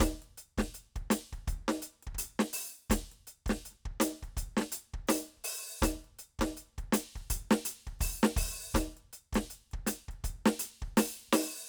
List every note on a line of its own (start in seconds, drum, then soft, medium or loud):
0.01 open hi-hat loud
0.01 kick medium
0.01 snare loud
0.01 hi-hat pedal soft
0.23 closed hi-hat soft
0.38 closed hi-hat medium
0.59 kick medium
0.59 snare loud
0.59 closed hi-hat soft
0.75 closed hi-hat medium
0.97 kick medium
0.97 closed hi-hat soft
1.11 closed hi-hat loud
1.11 snare loud
1.33 kick soft
1.33 closed hi-hat soft
1.48 closed hi-hat medium
1.48 kick medium
1.69 snare loud
1.83 closed hi-hat medium
2.04 closed hi-hat soft
2.08 kick soft
2.15 closed hi-hat loud
2.15 kick soft
2.40 snare loud
2.54 open hi-hat loud
2.91 closed hi-hat loud
2.91 kick medium
2.91 snare loud
2.91 hi-hat pedal soft
3.12 closed hi-hat soft
3.28 closed hi-hat medium
3.47 kick medium
3.47 snare loud
3.47 closed hi-hat medium
3.66 closed hi-hat medium
3.72 snare soft
3.86 kick medium
4.01 closed hi-hat loud
4.01 snare loud
4.23 kick soft
4.23 closed hi-hat soft
4.38 closed hi-hat medium
4.38 kick medium
4.58 snare loud
4.61 snare medium
4.73 closed hi-hat loud
4.94 kick medium
4.94 closed hi-hat soft
5.08 open hi-hat loud
5.08 snare loud
5.08 hi-hat pedal medium
5.38 kick soft
5.45 open hi-hat loud
5.83 open hi-hat loud
5.83 kick medium
5.83 snare loud
5.83 hi-hat pedal soft
6.05 closed hi-hat soft
6.20 closed hi-hat medium
6.40 kick medium
6.40 snare loud
6.40 closed hi-hat medium
6.58 closed hi-hat medium
6.79 kick medium
6.79 closed hi-hat soft
6.93 closed hi-hat loud
6.93 snare loud
7.16 kick soft
7.16 closed hi-hat soft
7.31 closed hi-hat loud
7.31 kick medium
7.52 snare loud
7.66 closed hi-hat loud
7.88 kick soft
7.88 closed hi-hat soft
8.00 open hi-hat loud
8.00 kick medium
8.00 hi-hat pedal soft
8.24 snare loud
8.37 open hi-hat loud
8.37 kick medium
8.75 open hi-hat loud
8.75 kick medium
8.75 snare loud
8.75 hi-hat pedal soft
8.98 closed hi-hat soft
9.14 closed hi-hat medium
9.34 kick medium
9.34 snare loud
9.34 closed hi-hat medium
9.51 closed hi-hat medium
9.72 kick medium
9.72 closed hi-hat soft
9.87 closed hi-hat loud
9.87 snare medium
10.09 kick soft
10.09 closed hi-hat soft
10.25 closed hi-hat medium
10.25 kick medium
10.47 snare loud
10.60 closed hi-hat loud
10.81 kick medium
10.81 closed hi-hat soft
10.98 open hi-hat loud
10.98 snare loud
11.29 kick soft
11.34 open hi-hat loud
11.34 snare loud